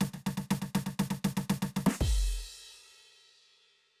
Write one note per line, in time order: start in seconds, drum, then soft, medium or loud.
0.01 snare loud
0.14 snare medium
0.27 snare loud
0.38 snare medium
0.51 snare loud
0.62 snare medium
0.75 snare loud
0.86 snare medium
1.00 snare loud
1.11 snare loud
1.25 snare loud
1.37 snare loud
1.50 snare loud
1.62 snare loud
1.77 snare loud
1.87 snare loud
2.01 kick loud
2.01 crash loud